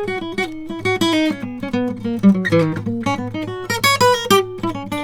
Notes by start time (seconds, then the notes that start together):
0.00 G#4
0.10 F#4
0.19 E4
0.39 F#4
0.49 D#4
0.72 E4
0.87 F#4
1.02 E4
1.14 D#4
1.32 C#4
1.44 B3
1.65 C#4
1.75 B3
2.06 A#3
2.25 G3
2.37 F#3
2.54 E3
2.88 A#3
2.98 A3
3.08 C#4
3.21 B3
3.36 D#4
3.49 F#4
3.71 A#4
3.85 C#5
4.02 B4
4.15 A#4
4.32 G4
4.65 E4
4.77 C#4
4.93 D4